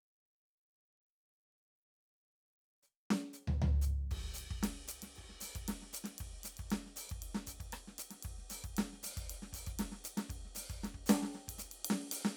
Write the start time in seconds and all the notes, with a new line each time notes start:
2.82 hi-hat pedal
3.10 snare
3.33 hi-hat pedal
3.47 floor tom
3.62 floor tom
3.81 hi-hat pedal
4.11 kick, crash, ride
4.34 hi-hat pedal
4.38 ride
4.50 kick
4.62 snare, ride
4.80 snare
4.88 hi-hat pedal, ride
5.02 snare, ride
5.15 kick, ride
5.29 snare
5.40 snare, hi-hat pedal, ride
5.55 kick, ride
5.68 snare, ride
5.82 snare
5.93 hi-hat pedal, ride
6.04 snare, ride
6.18 kick, ride
6.32 snare
6.43 snare, hi-hat pedal, ride
6.57 kick, ride
6.70 snare, ride
6.86 snare
6.96 hi-hat pedal, ride
7.09 kick, ride
7.22 ride
7.34 snare
7.47 kick, hi-hat pedal, ride
7.60 kick, ride
7.72 cross-stick, ride
7.87 snare
7.98 hi-hat pedal, ride
8.10 snare, ride
8.23 kick, ride
8.38 snare
8.50 snare, hi-hat pedal, ride
8.64 kick, ride
8.77 snare, ride
8.93 snare
9.03 snare, hi-hat pedal, ride
9.17 kick, ride
9.30 ride
9.42 snare
9.52 kick, hi-hat pedal, ride
9.66 kick, ride
9.79 snare, ride
9.92 snare
10.04 hi-hat pedal, ride
10.17 snare, ride
10.28 kick, hi-hat pedal, ride
10.45 snare
10.55 snare, hi-hat pedal, ride
10.69 kick, ride
10.83 snare, ride
10.94 kick
11.06 snare, hi-hat pedal, ride
11.23 snare
11.32 snare, hi-hat pedal
11.48 kick, ride
11.58 snare, hi-hat pedal
11.71 ride
11.83 hi-hat pedal, ride
11.90 snare
12.11 hi-hat pedal, ride
12.25 snare